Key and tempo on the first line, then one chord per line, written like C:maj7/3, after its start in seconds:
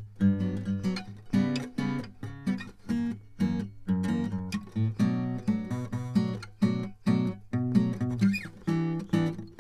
B minor, 131 BPM
0.00 G:maj7
1.33 C#:hdim7(11)/4
3.17 F#:7(#9)
5.00 B:min7
8.66 E:min7(4)/4